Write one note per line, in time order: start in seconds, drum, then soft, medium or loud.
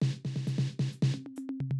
0.04 snare loud
0.25 snare medium
0.36 snare medium
0.47 snare medium
0.47 hi-hat pedal medium
0.58 snare loud
0.79 snare medium
0.92 hi-hat pedal medium
1.02 snare loud
1.14 high tom medium
1.26 high tom medium
1.36 hi-hat pedal medium
1.36 high tom medium
1.49 high tom medium
1.60 floor tom loud
1.71 floor tom loud